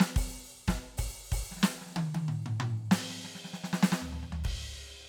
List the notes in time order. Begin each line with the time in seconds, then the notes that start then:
0.00 snare
0.16 open hi-hat, kick
0.68 kick, snare
0.98 open hi-hat, kick
1.32 open hi-hat, kick
1.51 snare
1.57 snare
1.60 snare
1.63 snare
1.81 snare
1.87 snare
1.90 snare
1.96 high tom
2.15 high tom
2.28 mid tom
2.46 mid tom
2.60 mid tom
2.91 snare, ride
3.10 snare
3.25 snare
3.35 snare
3.45 snare
3.54 snare
3.64 snare
3.73 snare
3.83 snare
3.92 snare
4.02 floor tom
4.12 floor tom
4.23 floor tom
4.32 floor tom
4.44 kick, ride